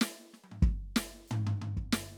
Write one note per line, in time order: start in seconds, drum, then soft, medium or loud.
0.01 snare loud
0.33 snare soft
0.44 high tom soft
0.51 floor tom medium
0.62 kick loud
0.96 snare loud
1.28 floor tom loud
1.28 hi-hat pedal soft
1.47 floor tom loud
1.62 floor tom loud
1.77 kick medium
1.93 snare loud